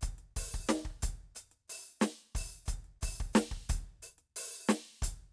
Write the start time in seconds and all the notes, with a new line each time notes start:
0.01 closed hi-hat, kick, hi-hat pedal
0.18 closed hi-hat
0.36 open hi-hat, kick
0.54 kick
0.67 closed hi-hat, snare, hi-hat pedal
0.85 kick, closed hi-hat
1.01 closed hi-hat, kick, hi-hat pedal
1.35 closed hi-hat, hi-hat pedal
1.51 closed hi-hat
1.68 open hi-hat, hi-hat pedal
2.00 closed hi-hat, snare, hi-hat pedal
2.19 closed hi-hat
2.35 open hi-hat, kick
2.66 closed hi-hat, kick, hi-hat pedal
2.84 closed hi-hat
3.01 open hi-hat, kick, hi-hat pedal
3.20 kick
3.33 closed hi-hat, snare, hi-hat pedal
3.51 kick, closed hi-hat
3.69 open hi-hat, kick, hi-hat pedal
4.02 open hi-hat, hi-hat pedal
4.18 closed hi-hat
4.36 open hi-hat
4.68 closed hi-hat, snare, hi-hat pedal
4.85 closed hi-hat
5.02 closed hi-hat, kick